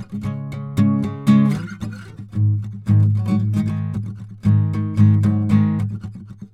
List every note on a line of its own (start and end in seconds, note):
0.17 0.25 C#3
0.25 0.53 C#3
0.25 0.53 G#3
0.25 0.76 C#4
0.53 0.78 C#3
0.79 1.05 C#3
0.79 1.05 G#3
0.79 1.29 C#4
1.05 1.28 C#3
1.05 1.28 G#3
1.28 1.51 C#3
1.28 1.55 G#3
1.28 1.54 C#4
1.51 1.69 D#3
2.35 2.72 G#2
2.35 2.59 D#3
2.89 3.32 G#2
2.89 3.16 D#3
2.89 3.11 G#3
3.17 3.26 F#3
3.29 3.42 G#2
3.29 3.49 F#3
3.42 3.59 G#2
3.55 3.70 D#3
3.55 3.70 G#3
3.59 3.67 G#2
3.68 3.77 G#2
3.68 3.80 D#3
3.68 3.98 G#3
3.77 4.06 G#2
3.77 4.04 D#3
4.45 4.98 G#2
4.45 4.75 D#3
4.45 4.75 G#3
4.75 4.99 D#3
4.75 5.01 G#3
4.99 5.24 G#2
4.99 5.51 D#3
4.99 5.20 G#3
5.25 5.50 G#2
5.25 5.47 F#3
5.51 5.88 G#2
5.51 5.82 D#3
5.51 5.82 G#3